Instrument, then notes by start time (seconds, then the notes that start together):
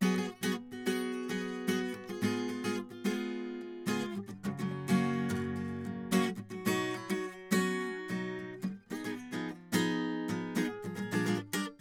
acoustic guitar
0.01 F#3 B3 F#4 G#4
0.19 F#4 G#4
0.44 D#3 F#3 B3 F#4 G#4
0.72 B3 F#4 G#4
0.87 F#3 B3 F#4 G#4
1.30 F#3 B3 F#4 G#4
1.69 F#3 B3 F#4 G#4
1.93 B3 F#4
2.10 B3 F4 G#4
2.23 G#3 B3 F4 G#4
2.49 B3 F4 G#4
2.65 G#3 B3 F4 G#4
2.91 B3 F4 G#4
3.05 G#3 B3 F4 G#4
3.62 B3
3.87 C#3 G#3 B3 F4 G#4
4.32 D3
4.44 F#2 C#3 F#3 C#4
4.59 F#2 C#3 F#3 C#4 F#4
4.89 F#2 C#3 F#3 A#3 C#4 F#4
5.30 F#2 C#3
5.58 A#3
5.86 F#2 C#3
6.12 C#3 F#3 A#3 C#4 F#4
6.37 F#3 F#4
6.51 F#3 F#4
6.67 B2 F#3 D#4 F#4
6.95 E4
7.10 F#3 D#4 F#4
7.52 F#3 B3 C#4 F#4
8.10 B2 F#3 D#4 F#4
8.40 F#3
8.64 F#3
8.91 B3 D#4 G#4
9.00 F3
9.06 B3 D#4 G#4
9.33 F3 B3 D#4 G#4
9.52 F3
9.74 F3 B3 D#4 G#4
10.30 F3 B3 D#4
10.57 F3 B3 D#4 G#4
10.85 F3 G#4 A#4
10.96 A#2 F3 G#4 A#4
11.12 A#2 F3 D4 G#4 A#4
11.26 A#2 F3 D4 G#4 A#4
11.54 D4 G#4 A#4